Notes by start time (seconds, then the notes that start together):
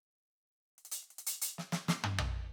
0.78 closed hi-hat
0.85 closed hi-hat
0.91 closed hi-hat
1.03 closed hi-hat
1.10 closed hi-hat
1.18 closed hi-hat
1.27 closed hi-hat
1.42 closed hi-hat
1.58 snare
1.72 snare
1.88 snare
2.04 high tom
2.19 floor tom